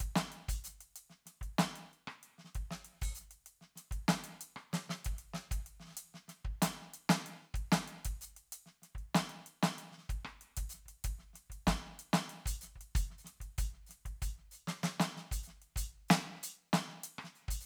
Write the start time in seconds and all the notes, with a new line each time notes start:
0.01 kick, closed hi-hat
0.16 snare
0.33 closed hi-hat
0.49 open hi-hat, kick
0.65 snare, hi-hat pedal
0.81 closed hi-hat
0.97 closed hi-hat
1.10 snare
1.26 snare, closed hi-hat
1.42 kick, closed hi-hat
1.59 snare
1.76 closed hi-hat
1.94 closed hi-hat
2.08 cross-stick
2.24 closed hi-hat
2.39 snare
2.45 snare
2.56 kick, closed hi-hat
2.72 snare
2.85 closed hi-hat
3.02 open hi-hat, kick
3.16 hi-hat pedal
3.21 snare
3.32 closed hi-hat
3.47 closed hi-hat
3.62 snare
3.76 snare, closed hi-hat
3.92 kick, closed hi-hat
4.09 snare
4.13 cross-stick
4.25 closed hi-hat
4.42 closed hi-hat
4.57 cross-stick
4.74 snare
4.90 snare
5.05 kick, closed hi-hat
5.19 closed hi-hat
5.34 snare
5.52 kick, closed hi-hat
5.67 closed hi-hat
5.81 snare
5.85 snare
5.88 snare
5.89 snare
5.91 snare
5.98 closed hi-hat
6.15 snare
6.29 snare, closed hi-hat
6.45 kick
6.63 snare, closed hi-hat
6.81 snare
6.94 closed hi-hat
7.10 snare
7.27 closed hi-hat
7.42 snare
7.55 kick, closed hi-hat
7.73 snare
7.88 closed hi-hat
8.06 kick, open hi-hat
8.22 hi-hat pedal
8.37 closed hi-hat
8.53 closed hi-hat
8.67 snare
8.83 snare, closed hi-hat
8.96 kick, closed hi-hat
9.15 snare
9.30 closed hi-hat
9.47 closed hi-hat
9.64 snare
9.79 closed hi-hat
9.92 snare
9.98 snare
10.03 snare
10.10 kick, closed hi-hat
10.26 cross-stick
10.42 closed hi-hat
10.57 kick, open hi-hat
10.70 hi-hat pedal
10.74 snare
10.86 kick, closed hi-hat
11.05 kick, closed hi-hat
11.19 snare
11.34 snare, closed hi-hat
11.51 kick, closed hi-hat
11.68 kick, snare
11.84 snare
12.00 closed hi-hat
12.14 snare
12.30 closed hi-hat
12.46 open hi-hat, kick
12.62 snare, hi-hat pedal
12.76 kick
12.82 closed hi-hat
12.96 open hi-hat, kick
13.11 snare
13.19 hi-hat pedal
13.25 snare, closed hi-hat
13.41 kick, closed hi-hat
13.59 open hi-hat, kick
13.74 snare
13.87 snare, hi-hat pedal
13.92 closed hi-hat
14.06 kick, closed hi-hat
14.23 open hi-hat, kick
14.38 snare
14.52 closed hi-hat, hi-hat pedal
14.68 snare
14.84 snare
15.01 snare
15.17 snare
15.32 open hi-hat, kick
15.44 hi-hat pedal
15.48 snare
15.62 closed hi-hat
15.77 open hi-hat, kick
16.09 snare, hi-hat pedal
16.25 snare
16.44 closed hi-hat
16.74 snare
16.89 snare
17.04 closed hi-hat
17.19 cross-stick
17.25 snare
17.36 closed hi-hat
17.43 snare
17.49 open hi-hat, kick
17.61 hi-hat pedal